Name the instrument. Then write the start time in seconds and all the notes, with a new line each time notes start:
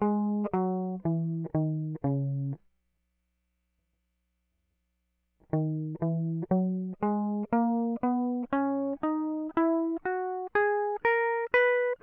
electric guitar
0.02 G#3
0.54 F#3
1.06 E3
1.55 D#3
2.05 C#3
5.54 D#3
6.03 E3
6.52 F#3
7.03 G#3
7.53 A#3
8.04 B3
8.53 C#4
9.03 D#4
9.57 E4
10.06 F#4
10.55 G#4
11.05 A#4
11.54 B4